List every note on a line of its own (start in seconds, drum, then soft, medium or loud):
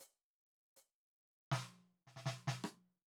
0.00 hi-hat pedal medium
0.76 hi-hat pedal soft
1.52 snare medium
2.07 snare soft
2.16 snare soft
2.26 snare medium
2.47 snare medium
2.64 cross-stick medium